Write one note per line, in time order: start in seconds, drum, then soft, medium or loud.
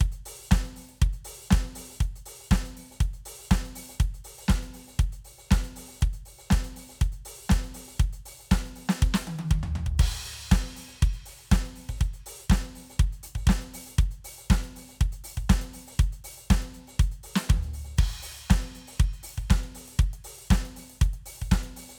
0.01 kick loud
0.01 closed hi-hat medium
0.12 closed hi-hat medium
0.26 open hi-hat loud
0.40 open hi-hat soft
0.48 snare loud
0.48 hi-hat pedal soft
0.52 kick loud
0.65 closed hi-hat soft
0.76 open hi-hat medium
0.89 open hi-hat soft
0.97 hi-hat pedal soft
1.02 kick loud
1.02 closed hi-hat soft
1.13 closed hi-hat medium
1.25 open hi-hat loud
1.39 open hi-hat soft
1.47 snare loud
1.47 hi-hat pedal soft
1.53 kick loud
1.65 closed hi-hat soft
1.76 open hi-hat loud
1.90 open hi-hat medium
1.97 hi-hat pedal soft
2.01 kick loud
2.01 closed hi-hat medium
2.16 closed hi-hat medium
2.26 open hi-hat loud
2.40 open hi-hat medium
2.47 hi-hat pedal soft
2.51 kick loud
2.51 snare loud
2.65 closed hi-hat medium
2.70 kick soft
2.77 open hi-hat medium
2.91 open hi-hat medium
2.96 hi-hat pedal soft
3.01 kick loud
3.01 closed hi-hat medium
3.14 closed hi-hat soft
3.26 open hi-hat loud
3.39 open hi-hat medium
3.47 hi-hat pedal soft
3.51 kick loud
3.51 snare loud
3.65 closed hi-hat medium
3.76 open hi-hat loud
3.89 open hi-hat medium
3.95 hi-hat pedal soft
4.00 kick loud
4.00 closed hi-hat medium
4.14 closed hi-hat medium
4.25 open hi-hat loud
4.38 open hi-hat medium
4.45 snare loud
4.45 hi-hat pedal soft
4.50 kick loud
4.63 closed hi-hat medium
4.74 open hi-hat medium
4.88 open hi-hat medium
4.96 kick loud
4.96 hi-hat pedal soft
5.01 closed hi-hat medium
5.13 closed hi-hat medium
5.25 open hi-hat medium
5.38 open hi-hat medium
5.48 kick loud
5.48 snare loud
5.48 hi-hat pedal soft
5.64 closed hi-hat medium
5.76 open hi-hat loud
5.88 open hi-hat medium
5.98 closed hi-hat medium
5.98 hi-hat pedal soft
6.03 kick loud
6.13 closed hi-hat medium
6.26 open hi-hat medium
6.38 open hi-hat medium
6.49 kick loud
6.49 snare loud
6.49 hi-hat pedal soft
6.64 closed hi-hat medium
6.76 open hi-hat loud
6.89 open hi-hat medium
6.99 closed hi-hat medium
6.99 kick loud
6.99 hi-hat pedal soft
7.12 closed hi-hat medium
7.25 open hi-hat loud
7.38 open hi-hat medium
7.47 snare loud
7.47 hi-hat pedal soft
7.52 kick loud
7.64 closed hi-hat soft
7.74 open hi-hat loud
7.87 open hi-hat medium
7.99 kick loud
7.99 closed hi-hat medium
7.99 hi-hat pedal soft
8.13 closed hi-hat medium
8.26 open hi-hat loud
8.39 open hi-hat medium
8.50 kick loud
8.50 snare loud
8.50 hi-hat pedal soft
8.65 closed hi-hat medium
8.76 open hi-hat medium
8.89 snare loud
8.99 closed hi-hat medium
8.99 kick loud
8.99 hi-hat pedal soft
9.14 snare loud
9.27 high tom loud
9.39 high tom loud
9.48 kick loud
9.48 floor tom loud
9.48 hi-hat pedal soft
9.63 floor tom loud
9.76 floor tom loud
9.87 kick medium
9.98 kick loud
9.98 hi-hat pedal soft
9.98 crash loud
10.24 open hi-hat medium
10.48 kick loud
10.48 snare loud
10.48 hi-hat pedal soft
10.70 closed hi-hat soft
10.76 open hi-hat loud
10.76 kick soft
10.88 open hi-hat medium
10.97 hi-hat pedal soft
11.03 closed hi-hat medium
11.03 kick loud
11.13 closed hi-hat soft
11.26 open hi-hat loud
11.38 open hi-hat medium
11.49 kick loud
11.49 snare loud
11.49 hi-hat pedal soft
11.65 closed hi-hat soft
11.76 open hi-hat medium
11.89 open hi-hat medium
11.89 kick medium
11.97 kick loud
11.97 hi-hat pedal soft
12.02 closed hi-hat medium
12.14 closed hi-hat medium
12.26 open hi-hat loud
12.38 open hi-hat medium
12.38 hi-hat pedal soft
12.50 kick loud
12.50 snare loud
12.62 closed hi-hat soft
12.75 open hi-hat medium
12.90 open hi-hat medium
12.94 hi-hat pedal soft
13.00 kick loud
13.00 closed hi-hat soft
13.13 closed hi-hat soft
13.23 open hi-hat loud
13.35 open hi-hat medium
13.35 kick medium
13.46 kick loud
13.46 snare loud
13.46 hi-hat pedal soft
13.61 closed hi-hat medium
13.74 open hi-hat loud
13.86 open hi-hat medium
13.93 hi-hat pedal soft
13.99 closed hi-hat medium
13.99 kick loud
14.11 closed hi-hat soft
14.25 open hi-hat loud
14.38 open hi-hat medium
14.46 hi-hat pedal soft
14.50 kick loud
14.50 snare loud
14.63 closed hi-hat medium
14.76 open hi-hat loud
14.89 open hi-hat medium
14.95 hi-hat pedal soft
15.01 kick loud
15.01 closed hi-hat medium
15.12 closed hi-hat medium
15.24 open hi-hat loud
15.37 kick medium
15.37 open hi-hat soft
15.50 kick loud
15.50 snare loud
15.50 hi-hat pedal soft
15.62 closed hi-hat medium
15.74 open hi-hat loud
15.87 open hi-hat loud
15.95 hi-hat pedal soft
16.00 closed hi-hat medium
16.00 kick loud
16.13 closed hi-hat medium
16.24 open hi-hat loud
16.37 open hi-hat medium
16.46 hi-hat pedal soft
16.51 kick loud
16.51 snare loud
16.62 closed hi-hat medium
16.74 closed hi-hat medium
16.88 open hi-hat medium
16.95 hi-hat pedal soft
17.00 closed hi-hat medium
17.00 kick loud
17.12 closed hi-hat soft
17.24 open hi-hat loud
17.36 snare loud
17.45 hi-hat pedal soft
17.50 kick loud
17.50 floor tom loud
17.63 closed hi-hat medium
17.74 open hi-hat medium
17.84 open hi-hat medium
17.95 kick loud
17.95 hi-hat pedal soft
17.95 crash loud
18.09 closed hi-hat soft
18.23 open hi-hat loud
18.37 open hi-hat soft
18.46 hi-hat pedal soft
18.50 kick loud
18.50 snare loud
18.62 closed hi-hat soft
18.75 open hi-hat medium
18.88 open hi-hat loud
18.95 hi-hat pedal soft
19.00 kick loud
19.00 closed hi-hat soft
19.13 closed hi-hat medium
19.23 open hi-hat loud
19.38 kick medium
19.38 open hi-hat soft
19.48 kick loud
19.48 snare loud
19.48 hi-hat pedal soft
19.64 closed hi-hat soft
19.75 open hi-hat loud
19.88 open hi-hat medium
19.96 kick loud
19.96 hi-hat pedal soft
20.02 closed hi-hat soft
20.14 closed hi-hat medium
20.24 open hi-hat loud
20.39 open hi-hat medium
20.47 kick loud
20.47 hi-hat pedal soft
20.52 snare loud
20.66 closed hi-hat medium
20.76 open hi-hat loud
20.90 open hi-hat medium
20.97 hi-hat pedal soft
21.02 kick loud
21.02 closed hi-hat medium
21.14 closed hi-hat medium
21.26 open hi-hat loud
21.37 open hi-hat medium
21.42 kick medium
21.52 kick loud
21.52 snare loud
21.52 hi-hat pedal soft
21.64 closed hi-hat medium
21.77 open hi-hat loud
21.89 open hi-hat medium